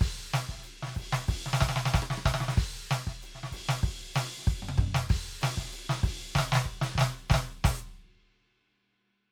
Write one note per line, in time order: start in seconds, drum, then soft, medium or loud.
0.01 kick loud
0.01 hi-hat pedal medium
0.01 crash loud
0.34 snare loud
0.34 hi-hat pedal medium
0.34 ride medium
0.49 kick medium
0.49 snare soft
0.59 snare soft
0.62 snare soft
0.62 hi-hat pedal medium
0.62 ride medium
0.83 snare medium
0.87 snare medium
0.92 snare soft
0.92 hi-hat pedal medium
0.97 kick medium
0.97 ride loud
1.13 snare loud
1.21 snare soft
1.28 kick loud
1.28 snare soft
1.28 ride loud
1.47 snare medium
1.54 snare loud
1.61 kick loud
1.61 snare loud
1.69 snare loud
1.77 snare loud
1.86 snare loud
1.93 kick loud
1.93 snare loud
1.93 hi-hat pedal medium
2.03 cross-stick medium
2.11 snare loud
2.18 cross-stick medium
2.24 kick loud
2.24 snare loud
2.24 hi-hat pedal medium
2.35 snare loud
2.41 snare loud
2.49 snare loud
2.58 kick loud
2.58 hi-hat pedal soft
2.58 crash loud
2.91 snare loud
2.91 hi-hat pedal medium
2.91 ride medium
3.08 kick medium
3.08 snare medium
3.23 hi-hat pedal medium
3.23 ride medium
3.36 snare medium
3.44 snare medium
3.53 kick medium
3.53 hi-hat pedal medium
3.53 ride loud
3.69 snare loud
3.82 kick loud
3.82 hi-hat pedal soft
3.82 ride loud
3.99 ride soft
4.14 snare loud
4.14 hi-hat pedal medium
4.14 ride loud
4.39 snare soft
4.42 snare soft
4.46 kick loud
4.46 snare soft
4.46 hi-hat pedal medium
4.63 mid tom loud
4.69 high tom loud
4.78 kick loud
4.78 hi-hat pedal soft
4.78 mid tom loud
4.95 snare loud
5.10 kick loud
5.10 hi-hat pedal soft
5.10 crash loud
5.41 snare loud
5.41 hi-hat pedal medium
5.41 ride loud
5.58 kick medium
5.58 snare medium
5.65 snare soft
5.69 snare soft
5.69 hi-hat pedal medium
5.73 ride medium
5.90 snare loud
6.04 kick loud
6.04 ride loud
6.36 kick medium
6.36 snare loud
6.39 snare loud
6.53 snare loud
6.56 snare loud
6.66 kick medium
6.82 snare loud
6.96 kick medium
6.96 snare loud
6.96 hi-hat pedal soft
7.02 snare loud
7.29 kick loud
7.29 snare loud
7.29 hi-hat pedal soft
7.35 snare loud
7.65 open hi-hat loud
7.65 kick loud
7.65 snare loud
7.80 hi-hat pedal medium